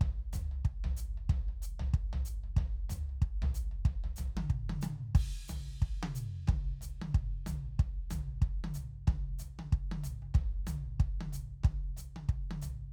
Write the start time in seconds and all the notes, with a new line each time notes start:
0.01 kick, floor tom
0.19 floor tom
0.33 hi-hat pedal, floor tom
0.52 floor tom
0.65 kick, floor tom
0.84 floor tom
0.97 floor tom, hi-hat pedal
1.18 floor tom
1.30 kick, floor tom
1.49 floor tom
1.62 floor tom, hi-hat pedal
1.80 floor tom
1.94 kick, floor tom
2.13 floor tom
2.26 floor tom, hi-hat pedal
2.44 floor tom
2.57 kick, floor tom
2.77 floor tom
2.90 hi-hat pedal, floor tom
3.10 floor tom
3.22 kick, floor tom
3.42 floor tom
3.55 floor tom, hi-hat pedal
3.72 floor tom
3.85 kick, floor tom
4.04 floor tom
4.17 floor tom, hi-hat pedal
4.37 high tom
4.50 kick
4.70 high tom
4.82 hi-hat pedal, high tom
5.15 kick, crash
5.48 kick, floor tom, hi-hat pedal, high tom
5.82 kick, floor tom
6.03 high tom
6.16 hi-hat pedal
6.48 kick, floor tom, high tom
6.81 floor tom, hi-hat pedal
7.02 high tom
7.15 kick, floor tom
7.47 floor tom, hi-hat pedal, high tom
7.80 kick, floor tom
8.11 floor tom, hi-hat pedal, high tom
8.42 kick, floor tom
8.64 high tom
8.74 floor tom, hi-hat pedal
9.08 kick, floor tom, high tom
9.39 floor tom, hi-hat pedal
9.59 high tom
9.73 kick, floor tom
9.92 high tom
10.04 floor tom, hi-hat pedal
10.22 high tom
10.35 kick, floor tom
10.67 floor tom, hi-hat pedal, high tom
11.00 kick, floor tom
11.21 high tom
11.32 kick, floor tom, hi-hat pedal
11.64 kick, floor tom, high tom
11.97 floor tom, hi-hat pedal
12.16 high tom
12.29 kick, floor tom
12.51 high tom
12.62 floor tom, hi-hat pedal